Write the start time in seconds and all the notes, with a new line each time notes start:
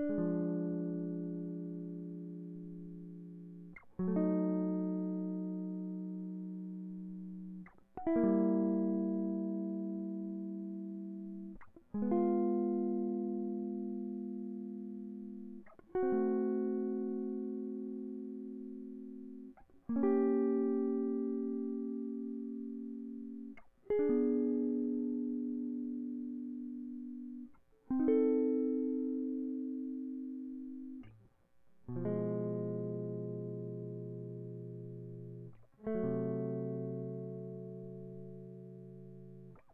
0.00 D4
0.10 G#3
0.19 F3
4.00 F#3
4.09 A3
4.17 D#4
8.07 E4
8.17 A#3
8.25 G3
11.95 G#3
12.03 B3
12.12 F4
15.96 F#4
16.03 C4
16.13 A3
19.90 A#3
19.97 C#4
20.04 G4
23.91 G#4
24.00 D4
24.10 B3
27.91 C4
28.00 D#4
28.09 A4
31.90 B2
31.97 F3
32.06 G#3
35.88 A3
35.96 F#3
36.05 C3